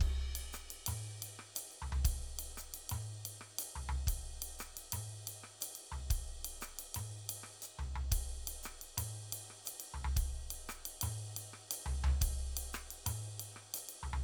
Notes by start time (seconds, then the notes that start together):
0.01 kick, ride
0.35 ride
0.53 cross-stick, hi-hat pedal
0.71 ride
0.87 mid tom, ride
1.23 ride
1.39 cross-stick
1.56 hi-hat pedal, ride
1.71 ride
1.82 floor tom
1.92 floor tom
2.05 kick, ride
2.39 ride
2.58 cross-stick, hi-hat pedal
2.74 ride
2.90 mid tom, ride
3.26 ride
3.41 cross-stick
3.59 hi-hat pedal, ride
3.76 floor tom
3.89 floor tom
4.07 kick, ride
4.42 ride
4.59 cross-stick, hi-hat pedal
4.77 ride
4.93 mid tom, ride
5.28 ride
5.44 cross-stick
5.61 hi-hat pedal, ride
5.76 ride
5.92 floor tom
6.10 kick, ride
6.45 ride
6.61 cross-stick, hi-hat pedal
6.79 ride
6.95 mid tom, ride
7.30 ride
7.44 cross-stick
7.62 hi-hat pedal, ride bell
7.79 floor tom
7.96 floor tom
8.12 kick, ride
8.48 ride
8.63 cross-stick, hi-hat pedal
8.82 ride
8.98 mid tom, ride
9.33 ride
9.50 cross-stick
9.65 hi-hat pedal, ride
9.80 ride
9.94 kick, floor tom
10.05 floor tom
10.17 kick, ride
10.51 ride
10.69 cross-stick, hi-hat pedal
10.86 ride
11.02 mid tom, ride
11.37 ride
11.54 cross-stick
11.71 hi-hat pedal, ride
11.86 floor tom
12.04 floor tom
12.22 kick, ride
12.57 ride
12.73 cross-stick, hi-hat pedal
12.91 ride
13.07 mid tom, ride
13.40 ride
13.56 cross-stick
13.74 hi-hat pedal, ride
13.89 ride
14.03 floor tom
14.14 floor tom